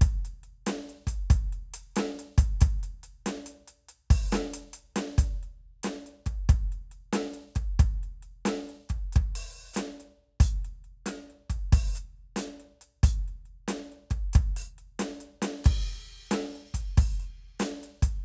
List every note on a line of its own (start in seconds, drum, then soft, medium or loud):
0.02 kick loud
0.02 closed hi-hat loud
0.26 closed hi-hat medium
0.44 closed hi-hat soft
0.67 snare loud
0.67 closed hi-hat loud
0.90 closed hi-hat medium
1.07 kick medium
1.07 closed hi-hat loud
1.31 kick loud
1.31 closed hi-hat loud
1.53 closed hi-hat soft
1.74 closed hi-hat loud
1.96 snare loud
1.96 closed hi-hat loud
2.20 closed hi-hat medium
2.38 kick loud
2.38 closed hi-hat loud
2.61 kick loud
2.61 closed hi-hat loud
2.84 closed hi-hat medium
3.04 closed hi-hat medium
3.27 snare loud
3.27 closed hi-hat loud
3.47 closed hi-hat medium
3.68 closed hi-hat medium
3.89 closed hi-hat medium
4.11 kick loud
4.11 open hi-hat loud
4.33 snare loud
4.33 hi-hat pedal loud
4.33 open hi-hat loud
4.54 closed hi-hat loud
4.74 closed hi-hat loud
4.96 snare loud
4.96 closed hi-hat loud
5.19 kick loud
5.19 closed hi-hat loud
5.43 closed hi-hat soft
5.84 snare loud
5.84 closed hi-hat loud
6.07 closed hi-hat medium
6.27 kick medium
6.27 closed hi-hat medium
6.50 kick loud
6.50 closed hi-hat medium
6.73 closed hi-hat soft
6.92 closed hi-hat soft
7.13 snare loud
7.13 closed hi-hat loud
7.34 closed hi-hat medium
7.56 kick medium
7.56 closed hi-hat medium
7.80 kick loud
7.80 closed hi-hat medium
8.04 closed hi-hat soft
8.23 closed hi-hat soft
8.46 snare loud
8.46 closed hi-hat loud
8.70 closed hi-hat soft
8.90 kick medium
8.90 closed hi-hat medium
9.13 kick loud
9.13 closed hi-hat medium
9.36 open hi-hat loud
9.74 snare loud
9.74 closed hi-hat loud
9.74 hi-hat pedal loud
10.01 closed hi-hat medium
10.41 closed hi-hat loud
10.41 kick loud
10.65 closed hi-hat soft
10.85 closed hi-hat soft
11.07 snare medium
11.07 closed hi-hat loud
11.31 closed hi-hat soft
11.50 kick medium
11.50 closed hi-hat medium
11.73 kick loud
11.73 open hi-hat loud
11.96 hi-hat pedal loud
12.37 closed hi-hat loud
12.37 snare loud
12.60 closed hi-hat soft
12.82 closed hi-hat medium
13.04 closed hi-hat loud
13.04 kick loud
13.29 closed hi-hat soft
13.46 closed hi-hat soft
13.68 snare loud
13.68 closed hi-hat loud
13.93 closed hi-hat soft
14.11 kick medium
14.11 closed hi-hat medium
14.34 kick loud
14.34 closed hi-hat loud
14.57 open hi-hat loud
14.62 hi-hat pedal soft
14.79 closed hi-hat soft
15.00 snare loud
15.00 closed hi-hat loud
15.21 closed hi-hat medium
15.43 snare loud
15.43 closed hi-hat loud
15.65 kick loud
15.65 crash loud
16.32 snare loud
16.32 closed hi-hat loud
16.56 closed hi-hat soft
16.75 kick medium
16.75 closed hi-hat loud
16.98 kick loud
16.98 open hi-hat loud
17.21 hi-hat pedal soft
17.21 open hi-hat soft
17.60 closed hi-hat loud
17.60 snare loud
17.84 closed hi-hat medium
18.03 kick loud
18.03 closed hi-hat loud